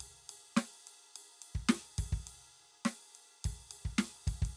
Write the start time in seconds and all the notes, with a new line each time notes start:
0.01 ride
0.30 ride
0.57 snare, ride
0.88 ride
1.16 ride
1.43 ride
1.55 kick
1.69 snare, ride
1.99 kick, ride
2.13 kick
2.28 ride
2.86 snare, ride
3.16 ride
3.45 kick, ride
3.72 ride
3.86 kick
3.99 snare, ride
4.28 kick, ride
4.43 kick, ride